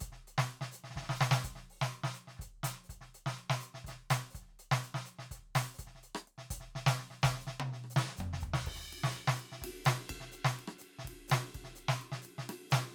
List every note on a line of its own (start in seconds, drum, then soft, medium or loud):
0.01 closed hi-hat medium
0.01 kick soft
0.08 kick soft
0.12 kick soft
0.12 snare soft
0.28 closed hi-hat soft
0.39 snare loud
0.51 closed hi-hat soft
0.62 snare medium
0.72 closed hi-hat medium
0.72 hi-hat pedal medium
0.84 snare soft
0.91 snare soft
0.96 kick soft
0.96 snare medium
1.03 snare medium
1.10 snare medium
1.16 hi-hat pedal medium
1.21 snare loud
1.32 snare loud
1.38 snare soft
1.38 hi-hat pedal soft
1.45 closed hi-hat medium
1.45 kick soft
1.51 kick soft
1.54 kick soft
1.54 snare soft
1.70 open hi-hat soft
1.82 snare medium
1.82 hi-hat pedal soft
1.94 closed hi-hat soft
2.04 snare medium
2.14 closed hi-hat soft
2.14 hi-hat pedal medium
2.28 snare soft
2.37 kick soft
2.37 snare soft
2.42 closed hi-hat medium
2.42 kick soft
2.64 open hi-hat loud
2.64 snare medium
2.78 snare soft
2.85 hi-hat pedal soft
2.90 closed hi-hat medium
2.90 kick soft
3.02 snare soft
3.15 closed hi-hat medium
3.27 snare medium
3.39 closed hi-hat soft
3.50 snare loud
3.61 closed hi-hat soft
3.61 hi-hat pedal medium
3.75 snare medium
3.85 closed hi-hat medium
3.85 kick soft
3.85 snare medium
4.11 closed hi-hat loud
4.11 snare loud
4.31 hi-hat pedal medium
4.35 closed hi-hat medium
4.35 kick soft
4.42 snare soft
4.49 snare soft
4.60 closed hi-hat soft
4.72 snare loud
4.84 closed hi-hat soft
4.95 snare medium
5.06 hi-hat pedal medium
5.19 snare medium
5.32 closed hi-hat medium
5.32 kick soft
5.32 snare soft
5.55 open hi-hat loud
5.55 snare loud
5.75 hi-hat pedal medium
5.79 closed hi-hat medium
5.79 kick soft
5.87 snare soft
5.96 snare soft
6.04 closed hi-hat soft
6.15 cross-stick medium
6.20 hi-hat pedal soft
6.28 closed hi-hat soft
6.38 snare soft
6.51 closed hi-hat loud
6.51 kick medium
6.57 kick soft
6.57 snare soft
6.61 kick soft
6.76 snare medium
6.87 snare loud
6.92 hi-hat pedal medium
6.99 snare soft
7.11 snare soft
7.23 kick soft
7.23 snare loud
7.23 hi-hat pedal soft
7.31 kick soft
7.31 snare soft
7.41 hi-hat pedal medium
7.48 snare medium
7.60 high tom loud
7.73 snare soft
7.84 cross-stick soft
7.91 hi-hat pedal medium
7.97 snare loud
8.09 snare soft
8.18 kick soft
8.18 hi-hat pedal medium
8.18 mid tom loud
8.27 kick soft
8.34 snare medium
8.41 kick soft
8.41 floor tom medium
8.41 hi-hat pedal medium
8.50 kick soft
8.52 kick soft
8.52 snare loud
8.60 hi-hat pedal medium
8.67 kick soft
8.67 crash medium
8.74 kick soft
8.74 snare soft
8.93 ride medium
9.04 snare loud
9.11 hi-hat pedal medium
9.16 ride soft
9.28 snare loud
9.36 hi-hat pedal medium
9.36 ride medium
9.53 snare medium
9.62 kick soft
9.62 snare soft
9.62 ride loud
9.85 snare loud
9.85 hi-hat pedal medium
9.85 ride loud
10.10 kick soft
10.10 ride bell loud
10.19 kick soft
10.19 snare soft
10.32 hi-hat pedal medium
10.32 ride soft
10.45 snare loud
10.60 ride medium
10.68 cross-stick medium
10.79 hi-hat pedal medium
10.79 ride medium
10.99 snare medium
11.05 kick soft
11.05 ride medium
11.29 snare loud
11.29 hi-hat pedal medium
11.29 ride loud
11.55 kick soft
11.55 ride bell medium
11.61 kick soft
11.61 snare soft
11.76 hi-hat pedal medium
11.76 ride soft
11.89 snare loud
12.02 ride soft
12.12 snare medium
12.22 hi-hat pedal medium
12.22 ride medium
12.39 snare medium
12.50 cross-stick medium
12.50 ride loud
12.71 snare loud
12.71 hi-hat pedal medium
12.71 ride medium